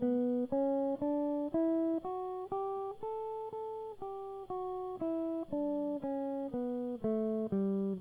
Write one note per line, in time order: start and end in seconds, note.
0.03 0.47 B3
0.53 0.98 C#4
1.02 1.50 D4
1.55 2.01 E4
2.05 2.52 F#4
2.52 2.98 G4
3.03 3.51 A4
3.54 4.01 A4
4.02 4.50 G4
4.50 4.99 F#4
5.02 5.46 E4
5.53 6.01 D4
6.04 6.52 C#4
6.55 7.00 B3
7.04 7.49 A3
7.53 7.99 G3